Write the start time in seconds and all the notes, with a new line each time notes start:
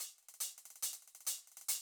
0.00 closed hi-hat
0.10 closed hi-hat
0.18 closed hi-hat
0.23 closed hi-hat
0.29 closed hi-hat
0.34 closed hi-hat
0.40 closed hi-hat
0.51 closed hi-hat
0.58 closed hi-hat
0.65 closed hi-hat
0.70 closed hi-hat
0.76 closed hi-hat
0.82 closed hi-hat
0.93 closed hi-hat
1.02 closed hi-hat
1.07 closed hi-hat
1.15 closed hi-hat
1.21 closed hi-hat
1.25 closed hi-hat
1.38 closed hi-hat
1.47 closed hi-hat
1.52 closed hi-hat
1.57 closed hi-hat
1.61 closed hi-hat
1.68 closed hi-hat